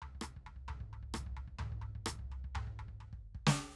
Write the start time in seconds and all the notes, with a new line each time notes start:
0.01 floor tom
0.15 kick
0.21 cross-stick, floor tom
0.36 kick
0.46 floor tom
0.56 kick
0.68 floor tom, high tom
0.80 kick
0.93 floor tom
1.03 kick
1.14 cross-stick, floor tom
1.26 kick
1.37 floor tom
1.48 kick
1.58 floor tom, high tom
1.72 kick
1.81 floor tom
1.95 kick
2.06 cross-stick, floor tom
2.19 kick
2.32 floor tom
2.44 kick
2.55 floor tom, high tom
2.67 kick
2.79 floor tom
2.88 kick
3.00 floor tom
3.13 kick
3.35 kick
3.47 snare, ride
3.71 hi-hat pedal